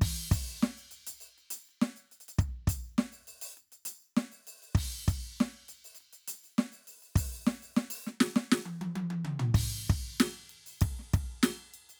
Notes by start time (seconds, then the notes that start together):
0.02 kick, crash
0.15 percussion
0.32 kick, percussion
0.48 percussion
0.62 snare, percussion
0.78 percussion
0.91 percussion
1.07 kick, percussion
1.21 percussion
1.26 percussion
1.38 percussion
1.51 percussion
1.69 percussion
1.82 snare
1.96 percussion
2.12 percussion
2.20 percussion
2.28 percussion
2.39 kick, percussion
2.68 kick, percussion
2.83 percussion
2.98 snare
3.12 percussion
3.27 percussion
3.42 percussion
3.51 percussion
3.57 percussion
3.72 percussion
3.85 percussion
4.03 percussion
4.17 snare
4.32 percussion
4.47 percussion
4.62 percussion
4.75 kick, crash
4.93 percussion
5.08 kick, percussion
5.25 percussion
5.41 snare
5.69 percussion
5.85 percussion
5.95 percussion
6.01 percussion
6.13 percussion
6.28 percussion
6.44 percussion
6.58 snare
6.72 percussion
6.87 percussion
7.02 percussion
7.16 kick, percussion
7.33 percussion
7.47 snare
7.63 percussion
7.77 snare
7.90 percussion
8.07 snare
8.21 snare
8.36 snare
8.52 snare
8.66 high tom
8.81 high tom
8.96 high tom
9.11 high tom
9.25 mid tom
9.40 floor tom
9.54 kick, crash
9.90 kick
10.20 snare, ride bell
10.50 ride
10.66 percussion
10.81 kick, ride, percussion
10.99 snare
11.14 kick, snare, ride
11.43 snare, ride bell
11.74 ride bell
11.89 percussion